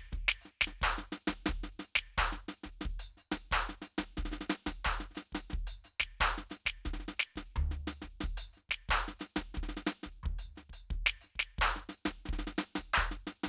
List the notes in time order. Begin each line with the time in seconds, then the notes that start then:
0.01 kick, snare
0.17 snare
0.30 hi-hat pedal
0.34 snare
0.50 kick, snare
0.56 snare
0.71 kick, percussion
0.87 snare
1.01 snare, hi-hat pedal
1.16 kick, snare
1.35 kick, snare
1.52 snare
1.68 snare, hi-hat pedal
1.84 kick, snare
2.07 kick, percussion
2.21 snare
2.37 snare, hi-hat pedal
2.52 kick, snare
2.70 snare
2.74 kick
2.88 closed hi-hat
3.06 snare, hi-hat pedal
3.21 kick, snare
3.40 kick, percussion
3.58 snare
3.71 snare, hi-hat pedal
3.87 kick, snare
4.06 kick, snare
4.14 snare
4.20 snare
4.30 snare
4.37 snare, hi-hat pedal
4.55 kick, snare
4.73 kick, percussion
4.89 snare
5.00 snare, hi-hat pedal
5.06 snare
5.21 kick, snare
5.39 kick, snare
5.56 closed hi-hat
5.73 snare, hi-hat pedal
5.89 kick, snare
6.09 kick, percussion
6.27 snare
6.39 snare, hi-hat pedal
6.54 kick, snare
6.74 kick, snare
6.82 snare
6.89 snare
6.97 snare
7.08 snare, hi-hat pedal
7.25 kick, snare
7.45 kick, floor tom
7.60 snare
7.76 snare, hi-hat pedal
7.91 kick, snare
8.09 kick, snare
8.26 closed hi-hat
8.42 hi-hat pedal
8.46 snare
8.58 kick, snare
8.78 kick, percussion
8.97 snare
9.08 snare, hi-hat pedal
9.25 kick, snare
9.43 kick, snare
9.52 snare
9.58 snare
9.66 snare
9.76 snare, hi-hat pedal
9.92 kick, snare
10.12 kick, floor tom
10.28 closed hi-hat
10.45 snare, hi-hat pedal
10.58 closed hi-hat, kick
10.79 kick, snare
10.95 snare
11.10 snare, hi-hat pedal
11.24 kick, snare
11.47 kick, percussion
11.65 snare
11.78 snare, hi-hat pedal
11.94 kick, snare
12.14 kick, snare
12.22 snare
12.28 snare
12.36 snare
12.47 snare, hi-hat pedal
12.64 kick, snare
12.82 kick, percussion
13.00 snare
13.16 snare, hi-hat pedal
13.32 kick, snare